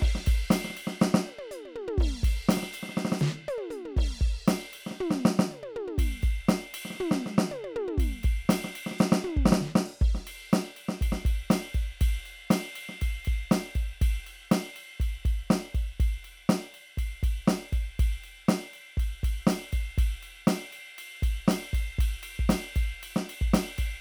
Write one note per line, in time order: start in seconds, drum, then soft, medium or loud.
0.01 kick medium
0.01 crash medium
0.15 snare medium
0.26 kick medium
0.26 ride loud
0.51 snare loud
0.51 ride loud
0.65 snare soft
0.70 snare soft
0.77 ride medium
0.87 snare medium
1.01 kick soft
1.01 snare loud
1.01 hi-hat pedal loud
1.14 snare loud
1.26 high tom soft
1.38 high tom medium
1.51 hi-hat pedal loud
1.51 high tom medium
1.65 high tom soft
1.75 mid tom medium
1.88 mid tom loud
1.98 kick medium
1.98 crash medium
2.23 kick medium
2.23 ride medium
2.49 snare loud
2.49 ride loud
2.57 snare medium
2.63 snare soft
2.73 hi-hat pedal loud
2.73 ride medium
2.83 snare soft
2.89 snare soft
2.97 snare medium
3.05 snare medium
3.12 snare medium
3.18 snare loud
3.18 hi-hat pedal loud
3.48 hi-hat pedal medium
3.48 high tom loud
3.58 high tom medium
3.70 hi-hat pedal medium
3.70 mid tom medium
3.85 mid tom medium
3.97 kick medium
3.97 crash medium
4.21 kick medium
4.48 snare loud
4.48 ride loud
4.73 ride medium
4.87 snare medium
4.91 snare soft
5.00 floor tom loud
5.11 snare medium
5.25 snare loud
5.39 snare loud
5.51 high tom medium
5.63 high tom medium
5.76 mid tom loud
5.87 mid tom medium
5.98 kick medium
5.98 ride loud
6.23 kick medium
6.23 ride medium
6.46 kick soft
6.46 snare loud
6.46 ride medium
6.74 ride loud
6.85 snare soft
6.91 snare soft
6.95 snare soft
7.00 floor tom loud
7.11 snare loud
7.26 snare medium
7.38 snare loud
7.51 high tom loud
7.64 high tom medium
7.76 mid tom loud
7.88 mid tom medium
7.98 kick medium
7.98 ride medium
8.23 kick medium
8.23 ride medium
8.45 kick soft
8.49 snare loud
8.49 ride loud
8.64 snare medium
8.75 ride medium
8.87 snare medium
8.92 snare soft
8.99 snare loud
8.99 hi-hat pedal loud
9.12 snare loud
9.24 floor tom loud
9.37 kick medium
9.46 snare loud
9.52 snare loud
9.61 snare medium
9.76 snare loud
9.86 open hi-hat medium
10.01 kick medium
10.01 crash medium
10.15 snare soft
10.27 ride medium
10.53 snare loud
10.53 ride medium
10.77 ride medium
10.89 snare medium
11.01 kick medium
11.01 ride medium
11.12 snare medium
11.25 kick medium
11.25 ride medium
11.50 snare loud
11.50 ride loud
11.74 kick medium
11.74 ride medium
12.01 kick medium
12.01 ride loud
12.26 ride medium
12.51 snare loud
12.51 ride loud
12.76 ride medium
12.89 snare soft
13.01 kick medium
13.01 ride medium
13.25 kick medium
13.25 ride medium
13.51 snare loud
13.51 ride medium
13.75 kick medium
13.75 ride medium
14.02 kick medium
14.02 ride loud
14.27 ride medium
14.52 snare loud
14.52 ride loud
14.76 ride medium
15.00 kick medium
15.00 ride medium
15.25 kick medium
15.25 ride medium
15.50 snare loud
15.50 ride medium
15.75 kick medium
15.75 ride medium
16.00 kick medium
16.00 ride medium
16.24 ride medium
16.49 snare loud
16.49 ride medium
16.74 ride medium
16.98 kick medium
16.98 ride medium
17.23 kick medium
17.23 ride medium
17.48 snare loud
17.48 ride medium
17.73 kick medium
17.73 ride medium
17.99 kick medium
17.99 ride medium
18.24 ride medium
18.44 hi-hat pedal soft
18.49 snare loud
18.49 ride medium
18.74 ride soft
18.97 kick medium
18.97 ride medium
19.23 kick medium
19.23 ride medium
19.47 snare loud
19.47 hi-hat pedal soft
19.47 ride loud
19.73 kick medium
19.73 ride medium
19.98 kick medium
19.98 ride medium
20.23 ride medium
20.47 snare loud
20.47 ride loud
20.73 ride medium
20.95 hi-hat pedal soft
20.95 ride medium
21.23 kick medium
21.23 ride medium
21.48 snare loud
21.48 hi-hat pedal soft
21.48 ride loud
21.73 kick medium
21.73 ride medium
21.99 kick medium
21.99 ride loud
22.23 ride medium
22.39 kick medium
22.49 snare loud
22.49 ride loud
22.76 kick medium
22.76 ride medium
23.03 ride medium
23.16 snare medium
23.29 ride medium
23.41 kick medium
23.54 snare loud
23.54 ride loud
23.78 kick medium
23.78 ride medium